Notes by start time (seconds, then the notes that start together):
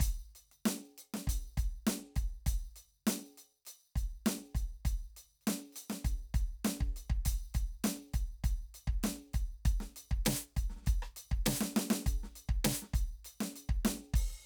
0.05 closed hi-hat, kick
0.35 closed hi-hat
0.51 closed hi-hat
0.65 closed hi-hat, snare
0.98 hi-hat pedal, percussion
1.14 snare
1.27 closed hi-hat, kick
1.57 closed hi-hat, kick
1.87 snare, hi-hat pedal, percussion
2.16 closed hi-hat, kick
2.46 closed hi-hat, kick
2.76 closed hi-hat
3.07 closed hi-hat, snare
3.37 closed hi-hat
3.65 closed hi-hat, hi-hat pedal
3.96 closed hi-hat, kick
4.25 closed hi-hat, snare, hi-hat pedal
4.55 closed hi-hat, kick
4.85 closed hi-hat, kick
5.16 closed hi-hat
5.41 hi-hat pedal
5.47 closed hi-hat, snare
5.72 closed hi-hat, hi-hat pedal
5.90 snare
6.04 closed hi-hat, kick
6.34 closed hi-hat, kick
6.64 closed hi-hat, snare
6.80 kick
6.96 closed hi-hat
7.10 kick
7.25 closed hi-hat, kick
7.54 closed hi-hat, kick
7.73 kick
7.84 closed hi-hat, snare
8.13 closed hi-hat, kick
8.44 closed hi-hat, kick
8.74 closed hi-hat
8.87 kick
9.03 closed hi-hat, snare
9.33 closed hi-hat, kick
9.65 closed hi-hat, kick
9.80 snare
9.96 closed hi-hat
10.11 kick
10.25 closed hi-hat, snare
10.56 closed hi-hat, kick
10.70 snare
10.76 snare
10.82 snare
10.86 closed hi-hat, kick
11.02 cross-stick
11.16 closed hi-hat
11.31 kick
11.46 closed hi-hat, snare
11.61 snare
11.76 snare
11.90 snare
12.06 closed hi-hat, kick
12.23 snare
12.35 closed hi-hat
12.49 kick
12.64 closed hi-hat, snare
12.82 snare
12.94 kick, percussion
13.25 closed hi-hat, hi-hat pedal
13.40 snare
13.56 closed hi-hat
13.69 kick
13.85 closed hi-hat, snare
14.14 kick, percussion